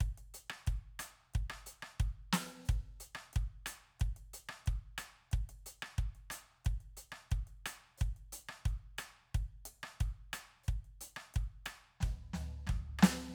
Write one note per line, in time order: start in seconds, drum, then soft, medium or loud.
0.01 kick medium
0.01 closed hi-hat soft
0.18 closed hi-hat soft
0.34 closed hi-hat medium
0.50 cross-stick medium
0.67 kick medium
0.67 closed hi-hat soft
1.00 closed hi-hat loud
1.00 cross-stick medium
1.34 kick soft
1.34 closed hi-hat soft
1.50 cross-stick medium
1.67 closed hi-hat medium
1.83 cross-stick medium
2.00 kick medium
2.00 closed hi-hat soft
2.33 open hi-hat loud
2.33 snare medium
2.66 kick medium
2.66 hi-hat pedal soft
2.72 closed hi-hat soft
3.01 closed hi-hat medium
3.15 cross-stick medium
3.33 kick medium
3.33 closed hi-hat soft
3.67 closed hi-hat loud
3.67 cross-stick medium
4.00 kick medium
4.00 closed hi-hat soft
4.17 closed hi-hat soft
4.34 closed hi-hat medium
4.49 cross-stick medium
4.67 kick medium
4.67 closed hi-hat soft
4.98 closed hi-hat medium
4.98 cross-stick medium
5.32 kick medium
5.32 closed hi-hat soft
5.50 closed hi-hat soft
5.67 closed hi-hat medium
5.83 cross-stick medium
5.99 kick soft
5.99 closed hi-hat soft
6.15 closed hi-hat soft
6.31 closed hi-hat loud
6.31 cross-stick medium
6.65 kick medium
6.65 closed hi-hat soft
6.81 closed hi-hat soft
6.97 closed hi-hat medium
7.12 cross-stick medium
7.31 kick medium
7.31 closed hi-hat soft
7.47 closed hi-hat soft
7.66 open hi-hat medium
7.66 cross-stick medium
7.98 kick medium
7.98 closed hi-hat soft
7.98 hi-hat pedal soft
8.17 closed hi-hat soft
8.33 closed hi-hat loud
8.49 cross-stick medium
8.66 kick medium
8.66 closed hi-hat soft
8.99 closed hi-hat medium
8.99 cross-stick medium
9.35 kick medium
9.35 closed hi-hat soft
9.66 closed hi-hat medium
9.84 cross-stick medium
10.01 kick medium
10.01 closed hi-hat soft
10.34 closed hi-hat medium
10.34 cross-stick medium
10.64 hi-hat pedal soft
10.68 kick soft
10.68 closed hi-hat soft
10.85 closed hi-hat soft
11.01 closed hi-hat medium
11.17 cross-stick medium
11.34 kick medium
11.34 closed hi-hat soft
11.66 cross-stick medium
11.66 open hi-hat medium
12.01 kick medium
12.01 snare soft
12.01 floor tom soft
12.34 snare soft
12.34 floor tom medium
12.67 kick soft
12.67 cross-stick medium
12.67 floor tom medium
12.99 cross-stick medium
12.99 snare loud